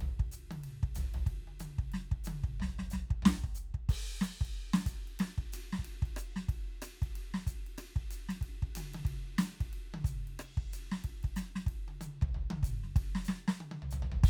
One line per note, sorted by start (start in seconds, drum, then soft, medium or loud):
0.01 floor tom loud
0.01 ride medium
0.20 kick medium
0.32 hi-hat pedal medium
0.32 ride medium
0.51 high tom loud
0.51 ride medium
0.64 ride medium
0.83 kick medium
0.95 floor tom loud
0.95 hi-hat pedal medium
0.95 ride medium
1.14 floor tom medium
1.14 ride medium
1.27 kick medium
1.27 ride medium
1.48 high tom soft
1.60 hi-hat pedal medium
1.60 high tom medium
1.60 ride medium
1.79 kick medium
1.92 snare medium
1.92 ride medium
2.12 kick medium
2.24 hi-hat pedal medium
2.24 high tom loud
2.24 ride medium
2.44 kick medium
2.60 snare medium
2.60 floor tom medium
2.79 snare medium
2.79 floor tom medium
2.91 snare medium
2.91 floor tom medium
2.91 hi-hat pedal medium
3.11 kick medium
3.23 snare loud
3.23 floor tom loud
3.44 kick medium
3.55 hi-hat pedal medium
3.74 kick soft
3.89 kick medium
3.89 crash medium
4.21 snare loud
4.21 hi-hat pedal medium
4.21 ride soft
4.41 kick medium
4.45 ride medium
4.57 ride soft
4.74 snare loud
4.86 kick medium
4.86 hi-hat pedal medium
4.86 ride medium
5.08 ride soft
5.20 snare loud
5.20 ride medium
5.38 kick medium
5.53 hi-hat pedal medium
5.53 ride loud
5.73 snare medium
5.79 kick soft
5.85 ride medium
6.02 kick medium
6.02 ride soft
6.17 cross-stick medium
6.17 hi-hat pedal medium
6.17 ride soft
6.36 snare medium
6.49 kick medium
6.49 ride medium
6.82 cross-stick medium
6.82 hi-hat pedal medium
6.82 ride medium
7.02 kick medium
7.02 ride medium
7.16 ride medium
7.34 snare medium
7.47 kick medium
7.47 hi-hat pedal medium
7.47 ride medium
7.67 ride medium
7.78 cross-stick medium
7.78 ride medium
7.96 kick medium
8.11 hi-hat pedal medium
8.11 ride medium
8.29 snare medium
8.29 ride medium
8.41 kick soft
8.41 ride medium
8.63 kick medium
8.76 hi-hat pedal medium
8.76 high tom medium
8.76 ride loud
8.94 high tom loud
8.94 ride medium
9.05 kick medium
9.05 ride medium
9.39 snare loud
9.39 hi-hat pedal medium
9.39 ride medium
9.61 kick medium
9.61 ride medium
9.73 ride medium
9.94 high tom loud
10.05 kick medium
10.05 hi-hat pedal medium
10.05 ride medium
10.28 ride soft
10.40 cross-stick medium
10.40 ride medium
10.57 kick medium
10.73 hi-hat pedal medium
10.73 ride medium
10.92 snare medium
11.04 kick soft
11.04 ride medium
11.23 kick medium
11.23 ride soft
11.36 snare medium
11.36 hi-hat pedal medium
11.36 ride medium
11.56 snare medium
11.67 kick medium
11.67 ride medium
11.88 high tom medium
12.01 hi-hat pedal medium
12.01 high tom loud
12.22 kick medium
12.22 floor tom medium
12.35 floor tom medium
12.51 high tom loud
12.63 kick medium
12.63 hi-hat pedal medium
12.63 ride medium
12.84 snare soft
12.96 kick medium
12.96 ride medium
13.15 snare medium
13.25 snare medium
13.25 hi-hat pedal medium
13.48 snare loud
13.61 high tom medium
13.72 high tom loud
13.82 floor tom medium
13.91 floor tom medium
13.91 hi-hat pedal medium
14.03 floor tom loud
14.12 floor tom loud
14.24 kick loud
14.24 crash medium